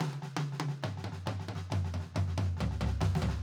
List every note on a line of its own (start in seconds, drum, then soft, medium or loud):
0.00 snare medium
0.00 high tom loud
0.07 snare medium
0.13 high tom medium
0.22 snare medium
0.36 snare medium
0.36 high tom loud
0.52 snare medium
0.60 high tom loud
0.68 snare medium
0.83 snare medium
0.83 mid tom loud
0.97 snare medium
1.04 mid tom loud
1.12 snare medium
1.26 snare medium
1.26 mid tom loud
1.39 snare medium
1.48 mid tom loud
1.55 snare medium
1.70 snare medium
1.70 floor tom loud
1.73 snare soft
1.84 snare medium
1.94 floor tom medium
2.00 snare medium
2.02 snare soft
2.14 snare soft
2.14 floor tom loud
2.28 snare soft
2.38 floor tom loud
2.43 snare soft
2.57 snare medium
2.57 floor tom loud
2.71 snare medium
2.81 floor tom loud
2.86 snare medium
3.01 snare medium
3.01 floor tom loud
3.15 snare loud
3.18 snare medium
3.18 floor tom loud
3.29 snare medium